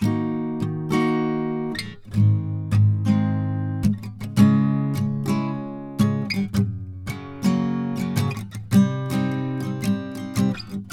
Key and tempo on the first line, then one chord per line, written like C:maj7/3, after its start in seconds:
A# minor, 110 BPM
0.00 D#:min(b9)/b2
2.18 G#:maj
4.36 C#:min
6.54 F#:maj
8.73 C:maj(#9)/3